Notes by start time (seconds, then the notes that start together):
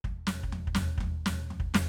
0.04 kick, floor tom
0.27 snare, floor tom
0.43 kick
0.53 floor tom
0.67 kick
0.75 snare, floor tom
0.98 kick, floor tom
1.26 snare, floor tom
1.50 floor tom
1.60 kick
1.74 snare, floor tom